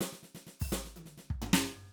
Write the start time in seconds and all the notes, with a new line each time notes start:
0.01 snare
0.12 snare
0.23 snare
0.35 snare
0.47 snare
0.59 open hi-hat, kick
0.71 snare, hi-hat pedal
0.85 snare
0.96 closed hi-hat, high tom
1.05 snare
1.18 snare
1.30 kick
1.42 floor tom
1.53 snare